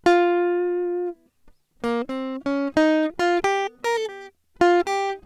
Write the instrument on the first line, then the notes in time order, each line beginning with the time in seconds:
acoustic guitar
0.08 F4
1.85 A#3
2.11 C4
2.48 C#4
2.79 D#4
3.21 F4
3.46 G4
3.86 A#4
3.97 A4
4.08 G4
4.63 F4
4.89 G4